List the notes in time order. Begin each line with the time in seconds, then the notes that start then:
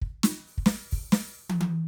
0.01 kick
0.23 closed hi-hat, snare
0.47 open hi-hat
0.58 kick
0.66 open hi-hat, snare
0.91 open hi-hat, kick
1.12 open hi-hat, snare
1.50 high tom
1.61 high tom